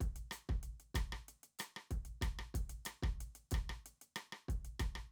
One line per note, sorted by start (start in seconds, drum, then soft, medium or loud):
0.01 kick medium
0.01 closed hi-hat soft
0.16 closed hi-hat soft
0.32 closed hi-hat soft
0.32 cross-stick medium
0.49 kick medium
0.49 cross-stick soft
0.63 closed hi-hat soft
0.80 closed hi-hat soft
0.95 kick medium
0.95 cross-stick medium
0.95 closed hi-hat medium
1.13 cross-stick medium
1.29 closed hi-hat soft
1.44 closed hi-hat soft
1.59 closed hi-hat medium
1.59 cross-stick medium
1.77 cross-stick medium
1.91 kick medium
1.91 closed hi-hat soft
2.06 closed hi-hat soft
2.22 kick medium
2.22 cross-stick medium
2.22 closed hi-hat soft
2.39 cross-stick medium
2.55 kick medium
2.55 closed hi-hat medium
2.70 closed hi-hat soft
2.86 cross-stick medium
2.86 closed hi-hat medium
3.03 kick medium
3.03 cross-stick medium
3.21 closed hi-hat soft
3.36 closed hi-hat soft
3.52 kick medium
3.52 cross-stick medium
3.52 closed hi-hat medium
3.70 cross-stick medium
3.86 closed hi-hat soft
4.02 closed hi-hat soft
4.16 cross-stick medium
4.16 closed hi-hat soft
4.33 cross-stick medium
4.49 kick medium
4.49 closed hi-hat soft
4.65 closed hi-hat soft
4.80 kick medium
4.80 cross-stick medium
4.80 closed hi-hat soft
4.96 cross-stick medium